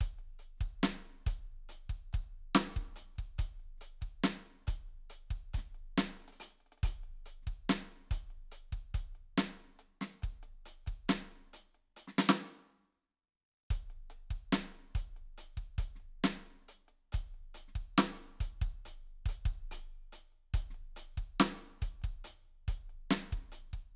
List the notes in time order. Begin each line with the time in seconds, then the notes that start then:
0.01 closed hi-hat, kick
0.18 closed hi-hat
0.39 closed hi-hat
0.57 kick, snare
0.62 closed hi-hat
0.83 closed hi-hat, snare
1.26 closed hi-hat, kick
1.47 closed hi-hat
1.69 closed hi-hat
1.89 kick, closed hi-hat
2.13 kick, closed hi-hat
2.33 closed hi-hat
2.55 closed hi-hat, snare
2.75 kick, closed hi-hat
2.96 closed hi-hat
3.16 kick, closed hi-hat
3.38 closed hi-hat, kick
3.60 closed hi-hat
3.77 closed hi-hat, snare
4.01 kick, closed hi-hat
4.24 closed hi-hat, snare
4.67 closed hi-hat, kick
4.89 closed hi-hat
5.10 closed hi-hat
5.30 kick, closed hi-hat
5.53 closed hi-hat, kick
5.57 snare
5.65 kick
5.74 closed hi-hat
5.98 closed hi-hat, snare
6.16 closed hi-hat
6.22 closed hi-hat
6.28 closed hi-hat
6.32 closed hi-hat
6.40 closed hi-hat
6.51 closed hi-hat
6.60 closed hi-hat
6.66 closed hi-hat
6.72 closed hi-hat
6.78 closed hi-hat
6.83 closed hi-hat, kick
7.03 closed hi-hat
7.26 closed hi-hat
7.42 snare
7.47 kick, closed hi-hat
7.69 closed hi-hat, snare
7.88 closed hi-hat
8.11 closed hi-hat, kick
8.30 closed hi-hat
8.52 closed hi-hat
8.72 kick
8.94 closed hi-hat, kick
9.15 closed hi-hat
9.38 closed hi-hat, snare
9.58 closed hi-hat
9.79 closed hi-hat
10.01 closed hi-hat, snare
10.22 kick, closed hi-hat
10.43 closed hi-hat
10.66 closed hi-hat
10.86 kick, closed hi-hat
11.09 closed hi-hat, snare
11.31 closed hi-hat
11.53 closed hi-hat
11.75 closed hi-hat
11.96 closed hi-hat
12.07 snare
12.18 snare
12.29 snare
13.70 closed hi-hat, kick
13.90 closed hi-hat
14.10 closed hi-hat
14.30 kick, closed hi-hat
14.52 closed hi-hat, snare
14.72 closed hi-hat
14.95 closed hi-hat, kick
15.16 closed hi-hat
15.38 closed hi-hat
15.57 kick, closed hi-hat
15.78 closed hi-hat, kick
15.95 snare
16.00 closed hi-hat
16.24 closed hi-hat, snare
16.45 closed hi-hat
16.68 closed hi-hat
16.88 closed hi-hat
17.12 closed hi-hat, kick
17.34 closed hi-hat
17.54 closed hi-hat
17.68 snare
17.75 kick, closed hi-hat
17.98 closed hi-hat, snare
18.17 snare, closed hi-hat
18.40 closed hi-hat, kick
18.61 kick, closed hi-hat
18.85 closed hi-hat
19.07 closed hi-hat
19.26 closed hi-hat, kick
19.45 kick, closed hi-hat
19.71 closed hi-hat
19.92 closed hi-hat
20.12 closed hi-hat
20.32 closed hi-hat
20.54 closed hi-hat, kick
20.70 snare
20.74 closed hi-hat
20.96 closed hi-hat
21.17 kick, closed hi-hat
21.40 closed hi-hat, snare
21.59 closed hi-hat
21.82 closed hi-hat, kick
22.02 kick, closed hi-hat
22.24 closed hi-hat
22.68 closed hi-hat, kick
22.89 closed hi-hat
23.11 closed hi-hat, snare
23.31 kick, closed hi-hat
23.52 closed hi-hat
23.73 kick, closed hi-hat